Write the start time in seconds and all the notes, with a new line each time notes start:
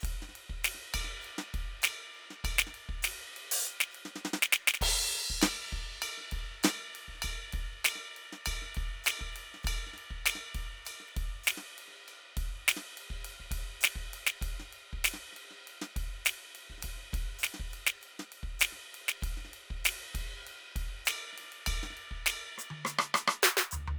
0.01 kick, hi-hat pedal
0.05 ride
0.10 kick
0.22 snare
0.29 snare
0.35 ride
0.50 kick
0.64 snare, hi-hat pedal, ride
0.75 snare
0.94 kick, ride bell
1.01 kick, snare
1.21 hi-hat pedal, ride
1.38 snare
1.54 kick, ride
1.61 kick
1.64 kick
1.82 snare, hi-hat pedal, ride bell
2.14 ride
2.31 snare
2.44 kick, ride bell
2.51 kick
2.59 snare
2.67 snare
2.74 ride
2.89 kick
2.95 kick
3.03 snare, hi-hat pedal, ride
3.37 ride
3.52 open hi-hat
3.67 ride
3.81 snare
3.91 hi-hat pedal, ride
4.05 snare
4.16 snare
4.25 snare
4.33 snare
4.42 snare
4.53 snare
4.68 snare
4.74 snare
4.81 kick, crash
5.09 hi-hat pedal
5.30 kick
5.42 snare, hi-hat pedal, ride bell
5.70 kick, ride
5.79 kick, snare
5.86 snare
6.02 hi-hat pedal, ride bell
6.18 snare
6.21 snare
6.32 kick, ride
6.39 kick
6.63 snare, hi-hat pedal, ride bell
6.95 ride
7.08 kick
7.15 snare
7.22 kick, snare, hi-hat pedal, ride bell
7.35 kick
7.53 kick, ride
7.60 kick
7.84 snare, hi-hat pedal, ride bell
7.96 snare
8.17 ride
8.33 snare
8.45 kick, hi-hat pedal, ride bell
8.54 kick
8.62 snare
8.75 kick, ride
8.85 kick
9.04 snare, hi-hat pedal, ride bell
9.19 kick, snare
9.32 hi-hat pedal
9.36 ride
9.54 snare
9.63 kick, hi-hat pedal, ride bell
9.72 kick
9.87 snare
9.94 snare
9.98 ride
10.11 kick
10.26 snare, hi-hat pedal, ride bell
10.35 snare
10.55 kick, ride
10.61 kick
10.66 snare
10.85 hi-hat pedal, ride bell
11.00 snare
11.08 snare
11.15 kick, snare, ride
11.24 kick
11.28 kick
11.44 snare, hi-hat pedal
11.48 ride
11.58 snare
11.78 ride
11.88 snare
11.92 snare
12.08 ride bell
12.37 kick, ride
12.50 kick
12.68 snare, hi-hat pedal, ride
12.77 snare
12.97 ride
13.10 kick
13.25 ride
13.40 kick, snare
13.51 kick, ride
13.74 kick
13.81 snare, hi-hat pedal, ride
13.96 kick
14.14 ride
14.27 snare
14.42 kick, ride
14.60 snare
14.73 ride
14.93 kick
14.99 kick
15.04 snare, hi-hat pedal, ride
15.14 snare
15.33 snare
15.37 ride
15.51 snare
15.68 ride
15.82 snare
15.96 kick, ride
16.03 kick
16.25 snare, hi-hat pedal, ride
16.55 ride
16.70 kick, snare
16.78 snare, hi-hat pedal
16.83 kick, snare, ride
16.95 kick, snare
17.01 snare
17.13 kick, snare, ride
17.21 kick
17.39 hi-hat pedal
17.43 snare, ride
17.54 snare
17.60 kick
17.70 hi-hat pedal, ride
17.87 snare
18.01 hi-hat pedal, ride
18.20 snare
18.32 ride
18.43 kick
18.60 snare, hi-hat pedal, ride
18.73 snare
18.95 ride
19.09 snare
19.21 kick, hi-hat pedal, ride
19.30 kick
19.37 snare
19.45 snare
19.49 snare
19.54 ride
19.71 kick
19.85 snare, hi-hat pedal, ride
20.15 kick, ride
20.21 kick
20.47 ride
20.76 kick, ride
20.83 kick
21.05 snare, hi-hat pedal, ride bell
21.33 snare
21.38 snare, ride
21.44 snare
21.52 ride
21.67 kick, ride bell
21.73 kick
21.80 kick, snare
21.91 snare
21.97 ride
22.11 kick
22.26 snare, hi-hat pedal, ride bell
22.58 cross-stick, hi-hat pedal
22.71 high tom
22.85 cross-stick, hi-hat pedal
22.99 cross-stick
23.14 cross-stick, hi-hat pedal
23.28 cross-stick
23.43 snare, hi-hat pedal
23.57 snare
23.71 floor tom, hi-hat pedal
23.88 floor tom